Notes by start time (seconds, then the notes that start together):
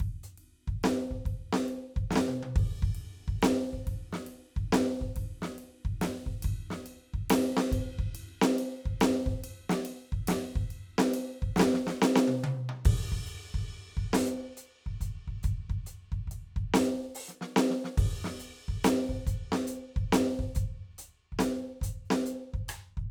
0.00 kick, ride
0.23 closed hi-hat
0.38 ride
0.67 kick
0.83 snare, ride
1.11 kick
1.25 kick, ride
1.53 snare
1.68 ride
1.96 kick
2.11 snare
2.16 snare
2.28 high tom
2.43 high tom
2.56 kick, crash
2.82 kick
2.95 ride
3.28 kick
3.42 snare, ride
3.73 kick
3.87 kick, ride
4.13 snare
4.26 ride
4.56 kick
4.72 snare
5.01 kick
5.16 kick, ride
5.42 snare
5.58 ride
5.85 kick
6.01 snare, ride
6.26 kick
6.42 kick, ride bell
6.70 snare
6.86 ride bell
7.13 kick
7.30 snare, ride
7.57 snare
7.71 kick, ride bell
7.98 kick
8.15 ride bell
8.41 snare
8.58 ride bell
8.85 kick
9.01 snare, ride bell
9.26 kick
9.44 ride bell
9.69 snare
9.85 ride bell
10.12 kick
10.27 snare, ride bell
10.55 kick
10.70 ride bell
10.98 snare
11.14 ride bell
11.42 kick
11.56 snare
11.59 snare
11.74 snare
11.87 snare
12.02 snare
12.16 snare
12.28 high tom
12.44 high tom
12.69 high tom
12.85 kick, crash
13.12 kick
13.26 closed hi-hat
13.54 kick
13.97 kick
14.13 open hi-hat, snare
14.26 hi-hat pedal
14.57 closed hi-hat
14.70 closed hi-hat
14.86 kick
15.01 closed hi-hat, kick
15.27 kick
15.43 closed hi-hat, kick
15.69 kick
15.86 closed hi-hat
16.12 kick
16.27 kick, closed hi-hat
16.56 kick
16.74 open hi-hat, snare
16.84 hi-hat pedal
17.15 open hi-hat
17.28 snare, hi-hat pedal
17.41 snare
17.56 snare
17.70 snare
17.84 snare
17.97 kick, crash
18.24 snare
18.39 closed hi-hat
18.68 kick
18.84 open hi-hat, snare
19.09 kick
19.26 closed hi-hat, kick
19.52 snare
19.67 closed hi-hat
19.96 kick
20.12 closed hi-hat, snare
20.39 kick
20.55 closed hi-hat, kick
20.98 closed hi-hat
21.32 kick
21.39 closed hi-hat, snare
21.81 closed hi-hat, kick
22.05 hi-hat pedal
22.10 snare
22.26 closed hi-hat
22.53 kick
22.63 kick
22.68 closed hi-hat, cross-stick
22.97 kick